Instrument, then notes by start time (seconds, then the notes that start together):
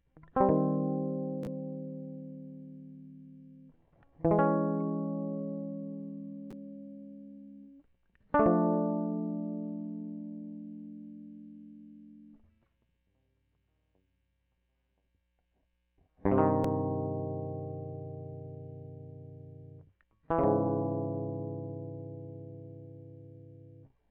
electric guitar
0.18 D#3
0.37 C4
0.41 G3
0.50 D#3
4.26 E3
4.32 G#3
4.39 C#4
8.34 D4
8.40 A3
8.47 F3
16.27 G2
16.33 C3
16.39 D#3
20.31 E3
20.40 C#3
20.45 G#2